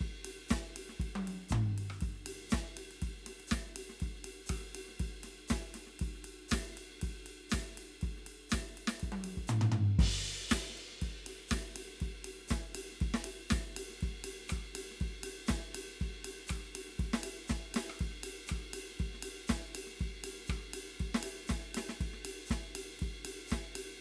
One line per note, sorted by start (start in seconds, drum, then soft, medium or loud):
0.01 kick medium
0.25 ride loud
0.49 kick medium
0.49 snare loud
0.49 hi-hat pedal loud
0.49 ride medium
0.76 ride loud
0.89 snare soft
1.00 kick medium
1.00 ride medium
1.16 high tom loud
1.28 ride medium
1.49 kick medium
1.49 floor tom loud
1.49 hi-hat pedal loud
1.78 ride medium
1.90 cross-stick medium
2.01 kick medium
2.01 ride medium
2.16 snare soft
2.26 ride loud
2.50 kick medium
2.50 snare loud
2.50 hi-hat pedal loud
2.50 ride medium
2.77 ride medium
2.86 snare soft
2.91 ride medium
3.02 kick medium
3.02 ride medium
3.18 snare soft
3.26 snare soft
3.26 ride medium
3.40 ride medium
3.48 snare medium
3.48 hi-hat pedal loud
3.52 kick medium
3.52 ride medium
3.67 snare soft
3.76 ride loud
3.90 snare soft
4.00 kick medium
4.00 ride medium
4.16 snare soft
4.25 ride loud
4.46 kick medium
4.46 cross-stick medium
4.46 hi-hat pedal loud
4.46 ride loud
4.61 snare soft
4.75 ride loud
4.88 snare soft
5.00 kick medium
5.00 ride medium
5.14 snare soft
5.24 snare soft
5.24 ride medium
5.48 kick medium
5.48 snare medium
5.48 hi-hat pedal loud
5.48 ride medium
5.74 snare soft
5.74 ride medium
5.87 snare soft
6.00 kick medium
6.00 ride medium
6.15 snare soft
6.25 ride medium
6.49 kick medium
6.49 snare loud
6.49 hi-hat pedal loud
6.49 ride loud
6.77 ride medium
6.91 snare soft
7.02 kick medium
7.02 ride medium
7.14 snare soft
7.26 ride medium
7.50 snare medium
7.50 hi-hat pedal medium
7.50 ride loud
7.54 kick medium
7.78 ride medium
8.02 kick medium
8.02 ride medium
8.18 snare soft
8.27 ride medium
8.50 kick medium
8.50 snare loud
8.50 hi-hat pedal loud
8.50 ride loud
8.78 ride medium
8.88 snare medium
9.00 kick soft
9.00 ride medium
9.12 high tom loud
9.24 ride medium
9.38 kick soft
9.48 floor tom loud
9.48 hi-hat pedal loud
9.61 floor tom loud
9.72 floor tom loud
9.99 kick medium
9.99 crash loud
9.99 ride loud
10.26 ride soft
10.49 kick soft
10.49 snare loud
10.49 hi-hat pedal loud
10.49 ride loud
10.78 ride medium
10.92 snare soft
11.02 kick medium
11.02 ride medium
11.27 ride loud
11.48 kick medium
11.48 snare medium
11.48 hi-hat pedal medium
11.48 ride loud
11.76 ride loud
11.91 snare soft
12.01 kick medium
12.01 ride medium
12.25 ride loud
12.48 kick medium
12.48 snare medium
12.48 hi-hat pedal loud
12.48 ride medium
12.75 ride loud
12.92 snare soft
13.01 kick medium
13.01 ride medium
13.14 snare medium
13.25 ride loud
13.50 kick medium
13.50 snare loud
13.50 hi-hat pedal loud
13.50 ride medium
13.77 ride loud
13.90 snare soft
14.01 kick medium
14.01 ride medium
14.13 snare soft
14.24 ride loud
14.49 kick medium
14.49 cross-stick medium
14.49 hi-hat pedal loud
14.49 ride medium
14.75 ride loud
14.91 snare soft
15.01 kick medium
15.01 ride soft
15.14 snare soft
15.24 ride loud
15.47 kick medium
15.47 snare loud
15.47 hi-hat pedal loud
15.47 ride medium
15.75 ride loud
15.88 snare soft
16.01 kick medium
16.01 ride soft
16.14 snare soft
16.25 ride loud
16.47 kick soft
16.47 cross-stick medium
16.47 hi-hat pedal loud
16.47 ride medium
16.75 ride loud
16.88 snare soft
17.00 kick medium
17.00 ride medium
17.14 snare loud
17.24 ride loud
17.48 kick medium
17.48 snare medium
17.48 hi-hat pedal medium
17.48 ride medium
17.75 snare medium
17.75 ride loud
17.90 cross-stick medium
18.00 kick medium
18.00 ride medium
18.11 snare soft
18.14 snare soft
18.24 ride loud
18.47 cross-stick medium
18.47 hi-hat pedal loud
18.47 ride medium
18.52 kick medium
18.64 snare soft
18.74 ride loud
18.91 snare soft
19.00 kick medium
19.00 ride soft
19.14 snare soft
19.23 ride loud
19.47 kick medium
19.47 snare loud
19.47 hi-hat pedal loud
19.47 ride medium
19.75 ride loud
19.87 snare soft
20.00 kick medium
20.00 ride soft
20.15 snare soft
20.24 ride loud
20.47 kick medium
20.47 cross-stick medium
20.47 hi-hat pedal medium
20.47 ride medium
20.68 snare soft
20.74 ride loud
20.92 snare soft
21.00 kick medium
21.00 ride medium
21.15 snare loud
21.23 ride loud
21.47 kick medium
21.47 snare medium
21.47 hi-hat pedal medium
21.47 ride medium
21.75 snare medium
21.75 ride loud
21.89 snare medium
21.95 hi-hat pedal soft
22.01 kick medium
22.01 ride medium
22.14 snare soft
22.25 ride loud
22.46 hi-hat pedal medium
22.46 ride medium
22.51 kick medium
22.51 snare medium
22.68 snare soft
22.75 ride loud
22.91 snare soft
23.00 kick medium
23.00 ride medium
23.25 ride loud
23.48 hi-hat pedal medium
23.48 ride medium
23.52 kick soft
23.52 snare medium
23.76 ride loud